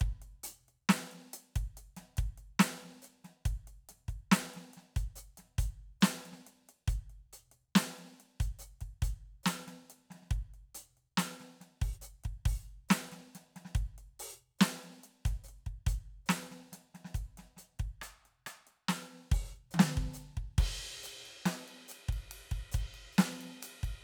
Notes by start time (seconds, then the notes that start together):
0.01 kick, snare, closed hi-hat
0.22 closed hi-hat
0.44 closed hi-hat
0.69 closed hi-hat
0.89 snare, closed hi-hat
0.98 snare
1.12 closed hi-hat
1.34 closed hi-hat
1.56 kick, closed hi-hat
1.77 closed hi-hat
1.97 snare, closed hi-hat
2.17 kick, closed hi-hat
2.38 closed hi-hat
2.60 closed hi-hat, snare
3.02 closed hi-hat, hi-hat pedal
3.25 snare, closed hi-hat
3.46 kick, closed hi-hat
3.68 closed hi-hat
3.89 snare, closed hi-hat
4.09 kick, closed hi-hat
4.32 closed hi-hat, snare
4.54 snare, closed hi-hat
4.74 snare, closed hi-hat
4.97 open hi-hat, kick
5.16 closed hi-hat, hi-hat pedal
5.38 snare, closed hi-hat
5.59 open hi-hat, kick
6.01 closed hi-hat, snare, hi-hat pedal
6.26 closed hi-hat
6.33 snare
6.47 closed hi-hat
6.69 closed hi-hat
6.88 closed hi-hat, kick
7.10 closed hi-hat
7.33 closed hi-hat
7.52 closed hi-hat
7.76 closed hi-hat, snare
7.83 snare
7.99 closed hi-hat
8.20 closed hi-hat
8.40 open hi-hat, kick
8.59 closed hi-hat, hi-hat pedal
8.81 kick, closed hi-hat
9.02 open hi-hat, kick
9.44 closed hi-hat, snare, hi-hat pedal
9.68 snare, closed hi-hat
9.90 snare, closed hi-hat
10.11 snare, closed hi-hat
10.15 snare
10.22 snare
10.25 snare
10.31 kick, snare, closed hi-hat
10.54 closed hi-hat
10.75 closed hi-hat
10.97 closed hi-hat
11.18 closed hi-hat, snare
11.40 snare, closed hi-hat
11.61 snare, closed hi-hat
11.82 open hi-hat, kick
12.02 closed hi-hat, hi-hat pedal
12.24 kick, closed hi-hat
12.46 open hi-hat, kick, ride
12.89 closed hi-hat, snare, hi-hat pedal
13.12 snare, closed hi-hat
13.35 snare, closed hi-hat
13.56 snare, closed hi-hat
13.65 snare
13.75 kick, closed hi-hat
13.98 closed hi-hat
14.20 open hi-hat
14.59 closed hi-hat, snare, hi-hat pedal
14.84 closed hi-hat
15.04 closed hi-hat
15.26 kick, snare, open hi-hat
15.44 hi-hat pedal
15.49 closed hi-hat
15.67 kick, closed hi-hat
15.87 open hi-hat, kick
16.26 closed hi-hat, snare, hi-hat pedal
16.52 snare, closed hi-hat
16.73 snare, closed hi-hat
16.95 snare, closed hi-hat
17.05 snare
17.15 kick, closed hi-hat
17.38 snare, closed hi-hat
17.57 closed hi-hat, snare
17.79 kick, closed hi-hat
18.02 closed hi-hat, cross-stick
18.26 closed hi-hat
18.47 closed hi-hat, cross-stick
18.67 closed hi-hat
18.89 closed hi-hat, snare
19.13 closed hi-hat
19.32 open hi-hat, kick
19.71 hi-hat pedal, high tom
19.80 snare
19.97 kick
20.14 hi-hat pedal
20.37 kick
20.58 kick, crash, ride
21.04 hi-hat pedal, ride
21.26 ride
21.46 snare, ride
21.68 ride
21.88 hi-hat pedal, ride
22.09 kick
22.13 ride
22.32 ride
22.52 kick, ride
22.72 kick, hi-hat pedal, ride
22.94 ride
23.13 hi-hat pedal
23.18 snare, ride
23.41 ride
23.63 hi-hat pedal, ride
23.83 kick, ride